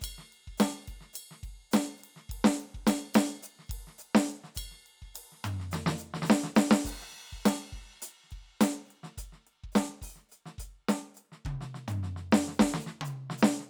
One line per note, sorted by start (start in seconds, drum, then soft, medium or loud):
0.01 kick soft
0.01 hi-hat pedal medium
0.01 ride bell loud
0.07 kick soft
0.10 kick soft
0.18 snare soft
0.32 ride soft
0.47 kick soft
0.57 snare loud
0.57 hi-hat pedal medium
0.57 ride bell loud
0.71 snare soft
0.88 kick soft
0.88 ride medium
1.01 snare soft
1.13 hi-hat pedal medium
1.13 ride bell loud
1.31 snare soft
1.43 kick soft
1.43 ride soft
1.49 kick soft
1.71 snare loud
1.71 hi-hat pedal medium
1.71 ride bell loud
1.97 hi-hat pedal soft
2.04 ride medium
2.16 snare soft
2.29 kick soft
2.29 ride loud
2.35 kick soft
2.38 kick soft
2.44 snare loud
2.60 ride medium
2.74 kick soft
2.87 snare loud
2.87 hi-hat pedal loud
2.87 ride bell loud
3.14 snare loud
3.14 hi-hat pedal medium
3.14 ride bell loud
3.43 hi-hat pedal loud
3.43 ride medium
3.59 snare soft
3.66 kick medium
3.66 hi-hat pedal soft
3.71 ride loud
3.76 kick soft
3.80 kick soft
3.87 snare soft
3.98 hi-hat pedal medium
4.02 ride soft
4.15 snare loud
4.30 ride soft
4.44 snare soft
4.55 kick soft
4.55 hi-hat pedal medium
4.55 ride bell loud
4.62 kick soft
4.66 kick soft
4.71 snare soft
4.86 ride soft
5.02 kick soft
5.02 snare soft
5.15 hi-hat pedal medium
5.15 ride loud
5.32 snare soft
5.44 hi-hat pedal medium
5.44 mid tom loud
5.60 snare soft
5.71 snare medium
5.71 hi-hat pedal loud
5.86 snare loud
5.98 hi-hat pedal loud
6.14 snare medium
6.22 snare medium
6.22 hi-hat pedal medium
6.30 snare loud
6.43 snare medium
6.55 snare loud
6.55 hi-hat pedal loud
6.71 snare loud
6.85 kick soft
6.85 hi-hat pedal loud
6.85 crash medium
6.91 kick soft
7.02 cross-stick soft
7.12 snare soft
7.32 kick soft
7.45 snare loud
7.45 hi-hat pedal loud
7.45 ride bell loud
7.72 kick soft
7.78 kick soft
7.94 snare soft
7.99 closed hi-hat loud
7.99 hi-hat pedal soft
8.24 snare soft
8.31 kick soft
8.31 closed hi-hat soft
8.61 closed hi-hat loud
8.61 snare loud
8.85 hi-hat pedal soft
8.90 closed hi-hat soft
9.03 snare soft
9.18 closed hi-hat medium
9.18 kick soft
9.23 kick soft
9.32 snare soft
9.47 closed hi-hat soft
9.63 kick soft
9.72 closed hi-hat medium
9.72 snare loud
9.72 hi-hat pedal soft
9.88 snare soft
10.02 open hi-hat medium
10.02 kick soft
10.16 snare soft
10.29 closed hi-hat medium
10.29 hi-hat pedal soft
10.46 snare soft
10.58 closed hi-hat medium
10.58 kick soft
10.64 kick soft
10.88 closed hi-hat medium
10.88 snare medium
11.14 closed hi-hat medium
11.14 hi-hat pedal soft
11.32 snare soft
11.45 kick medium
11.45 high tom loud
11.52 kick soft
11.55 kick soft
11.61 snare medium
11.74 snare soft
11.88 hi-hat pedal medium
11.88 mid tom loud
12.03 snare soft
12.16 snare soft
12.32 snare loud
12.32 hi-hat pedal soft
12.48 snare soft
12.54 hi-hat pedal soft
12.59 kick soft
12.59 snare loud
12.74 snare medium
12.80 hi-hat pedal medium
12.86 snare medium
13.01 hi-hat pedal medium
13.01 high tom loud
13.30 snare medium
13.38 hi-hat pedal medium
13.43 snare loud
13.59 snare soft